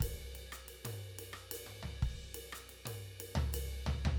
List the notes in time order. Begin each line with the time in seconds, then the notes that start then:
0.01 kick, ride
0.36 ride
0.53 cross-stick, hi-hat pedal
0.69 ride
0.85 mid tom, ride
1.19 ride
1.34 cross-stick
1.52 hi-hat pedal, ride
1.67 mid tom
1.83 floor tom
2.03 kick, ride
2.19 ride
2.35 ride
2.53 cross-stick, hi-hat pedal
2.70 ride
2.86 mid tom, ride
3.21 ride
3.36 floor tom
3.53 hi-hat pedal, ride
3.87 floor tom
4.06 floor tom